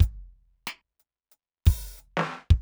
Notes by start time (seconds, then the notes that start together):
0.01 kick, closed hi-hat
0.68 snare, closed hi-hat
1.00 closed hi-hat
1.32 closed hi-hat
1.66 open hi-hat, kick
1.98 hi-hat pedal
2.18 snare
2.20 snare
2.51 kick